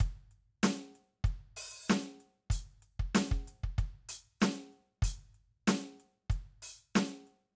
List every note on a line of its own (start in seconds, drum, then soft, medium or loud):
0.01 kick medium
0.01 closed hi-hat medium
0.32 closed hi-hat soft
0.64 closed hi-hat loud
0.64 snare loud
0.96 closed hi-hat soft
1.25 kick medium
1.25 closed hi-hat soft
1.57 open hi-hat loud
1.89 closed hi-hat medium
1.89 snare loud
1.89 hi-hat pedal medium
2.21 closed hi-hat soft
2.51 closed hi-hat loud
2.51 kick medium
2.83 closed hi-hat soft
3.00 kick medium
3.16 closed hi-hat loud
3.16 snare loud
3.32 kick medium
3.48 closed hi-hat medium
3.64 kick medium
3.79 kick medium
3.79 closed hi-hat soft
4.10 open hi-hat loud
4.41 closed hi-hat medium
4.41 snare loud
4.41 hi-hat pedal medium
4.73 closed hi-hat soft
5.03 closed hi-hat loud
5.03 kick medium
5.35 closed hi-hat soft
5.68 closed hi-hat loud
5.68 snare loud
6.01 closed hi-hat soft
6.31 kick medium
6.31 closed hi-hat medium
6.63 open hi-hat loud
6.96 snare loud
6.96 closed hi-hat medium
6.96 hi-hat pedal medium
7.28 closed hi-hat soft